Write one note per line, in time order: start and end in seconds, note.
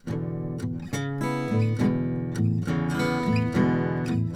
0.08 0.61 E2
0.08 0.61 B2
0.13 0.83 D3
0.61 0.86 E2
0.61 0.81 B2
0.87 1.23 E2
0.93 1.49 C#3
0.93 1.08 D#3
1.22 1.93 B3
1.22 1.60 E4
1.49 1.76 E2
1.49 1.75 A2
1.54 1.79 D3
1.77 2.36 E2
1.77 2.36 B2
1.77 2.63 D3
1.82 1.95 G#3
2.36 2.68 E2
2.36 2.62 A2
2.68 3.26 E2
2.68 3.23 C#3
2.68 3.24 D3
2.95 4.35 E4
3.00 4.20 B3
3.27 3.53 E2
3.27 3.51 A2
3.53 4.10 E2
3.53 4.05 B2
3.53 4.34 D3
3.58 4.02 G#3
4.06 4.29 A2
4.10 4.35 E2